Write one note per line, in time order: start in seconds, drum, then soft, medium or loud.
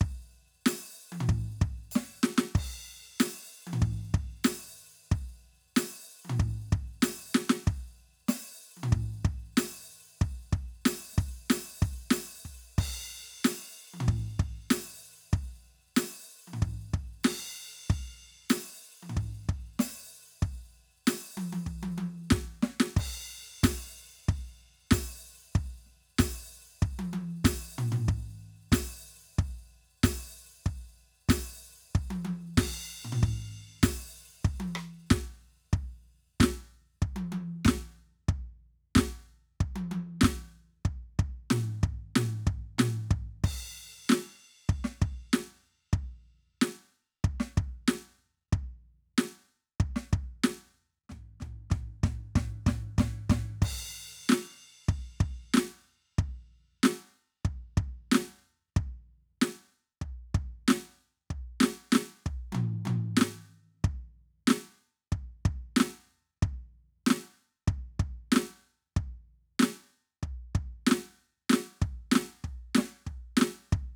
0.01 kick loud
0.66 snare loud
0.66 percussion loud
1.12 high tom loud
1.21 floor tom loud
1.29 kick loud
1.62 kick loud
1.92 percussion loud
1.96 snare loud
2.23 snare loud
2.38 snare loud
2.55 kick loud
2.55 crash loud
3.20 snare loud
3.20 percussion loud
3.67 high tom loud
3.73 floor tom loud
3.82 kick loud
4.14 kick loud
4.44 snare loud
4.44 percussion loud
5.12 kick loud
5.77 snare loud
5.77 percussion loud
6.25 high tom medium
6.30 floor tom loud
6.40 kick loud
6.72 kick loud
7.03 snare loud
7.03 percussion loud
7.35 snare loud
7.50 snare loud
7.67 kick loud
8.29 snare loud
8.29 percussion loud
8.77 high tom medium
8.84 floor tom loud
8.92 kick loud
9.25 kick loud
9.57 snare loud
9.57 percussion loud
10.21 kick loud
10.53 kick loud
10.86 snare loud
10.86 percussion loud
11.13 snare soft
11.18 kick loud
11.50 snare loud
11.50 percussion loud
11.82 kick loud
12.11 snare loud
12.11 percussion loud
12.45 kick soft
12.78 kick loud
12.78 crash loud
13.45 snare loud
13.45 percussion loud
13.94 high tom medium
14.01 floor tom loud
14.08 kick loud
14.40 kick loud
14.71 snare loud
14.71 percussion loud
15.33 kick loud
15.97 snare loud
15.97 percussion loud
16.48 high tom medium
16.54 floor tom loud
16.62 kick loud
16.94 kick loud
17.24 snare loud
17.24 crash loud
17.90 kick loud
18.50 snare loud
18.50 percussion loud
19.03 high tom medium
19.10 floor tom loud
19.17 kick loud
19.49 kick loud
19.80 snare loud
19.80 percussion loud
20.42 kick loud
20.54 snare soft
21.07 snare loud
21.07 percussion loud
21.37 high tom loud
21.53 high tom loud
21.66 kick medium
21.83 high tom loud
21.98 high tom loud
22.31 kick loud
22.31 snare loud
22.63 snare loud
22.80 snare loud
22.97 kick loud
22.97 crash loud
23.64 kick loud
23.64 snare loud
23.64 percussion loud
24.29 kick loud
24.91 kick loud
24.91 snare loud
24.91 percussion loud
25.55 kick loud
25.86 snare soft
26.19 kick loud
26.19 snare loud
26.19 percussion loud
26.82 kick loud
26.99 high tom loud
27.13 high tom loud
27.45 kick loud
27.45 snare loud
27.45 percussion loud
27.78 floor tom loud
27.92 floor tom loud
28.09 kick loud
28.72 kick loud
28.72 snare loud
28.72 percussion loud
29.39 kick loud
30.04 kick loud
30.04 snare loud
30.04 percussion loud
30.66 kick loud
31.29 kick loud
31.29 snare loud
31.29 percussion loud
31.95 kick loud
32.11 high tom loud
32.25 high tom loud
32.58 kick loud
32.58 snare loud
32.58 crash loud
33.05 floor tom medium
33.13 floor tom loud
33.23 kick loud
33.83 kick loud
33.83 snare loud
33.83 percussion loud
33.99 snare soft
34.45 kick loud
34.60 high tom loud
34.75 high tom loud
35.11 kick loud
35.11 snare loud
35.73 kick loud
36.40 kick loud
36.40 snare loud
36.43 snare loud
37.02 kick loud
37.16 high tom loud
37.32 high tom loud
37.65 kick loud
37.65 snare loud
37.68 snare loud
38.29 kick loud
38.95 kick loud
38.95 snare loud
38.98 snare loud
39.61 kick loud
39.76 high tom loud
39.91 high tom loud
40.21 kick loud
40.21 snare loud
40.25 snare loud
40.85 kick loud
41.19 kick loud
41.51 snare loud
41.51 floor tom loud
41.83 kick loud
42.16 snare loud
42.16 floor tom loud
42.47 kick loud
42.79 snare loud
42.79 floor tom loud
43.11 kick loud
43.44 kick loud
43.44 crash loud
44.09 snare loud
44.12 snare loud
44.69 kick loud
44.84 snare medium
45.02 kick loud
45.33 snare loud
45.93 kick loud
46.62 snare loud
47.24 kick loud
47.40 snare loud
47.57 kick loud
47.88 snare loud
48.53 kick loud
49.18 snare loud
49.80 kick loud
49.96 snare medium
50.13 kick loud
50.44 snare loud
51.09 kick soft
51.09 snare soft
51.09 floor tom soft
51.40 kick medium
51.40 snare soft
51.40 floor tom medium
51.70 kick loud
51.70 snare medium
51.70 floor tom medium
52.04 kick loud
52.04 snare medium
52.04 floor tom medium
52.36 kick loud
52.36 snare medium
52.36 floor tom medium
52.67 kick loud
52.67 snare loud
52.67 floor tom medium
52.98 kick loud
52.98 snare loud
52.98 floor tom loud
53.30 kick loud
53.30 snare loud
53.30 floor tom loud
53.62 kick loud
53.62 crash loud
54.29 snare loud
54.32 snare loud
54.89 kick loud
55.20 kick loud
55.54 snare loud
55.57 snare loud
56.19 kick loud
56.83 snare loud
56.85 snare loud
57.45 kick loud
57.77 kick loud
58.12 snare loud
58.15 snare loud
58.76 kick loud
59.42 snare loud
60.02 kick medium
60.35 kick loud
60.68 snare loud
60.70 snare loud
61.30 kick medium
61.61 snare loud
61.63 snare loud
61.92 snare loud
61.95 snare loud
62.26 kick loud
62.53 floor tom loud
62.53 high tom loud
62.86 floor tom loud
62.86 high tom loud
63.17 snare loud
63.21 snare loud
63.84 kick loud
64.47 snare loud
64.50 snare loud
65.12 kick loud
65.45 kick loud
65.76 snare loud
65.80 snare loud
66.43 kick loud
67.07 snare loud
67.11 snare loud
67.68 kick loud
68.00 kick loud
68.32 snare loud
68.36 snare loud
68.97 kick loud
69.60 snare loud
69.63 snare loud
70.23 kick medium
70.55 kick loud
70.87 snare loud
70.91 snare loud
71.50 snare loud
71.53 snare loud
71.82 kick loud
72.12 snare loud
72.16 snare loud
72.44 kick medium
72.75 snare loud
72.78 snare loud
73.07 kick medium
73.37 snare loud
73.41 snare loud
73.73 kick loud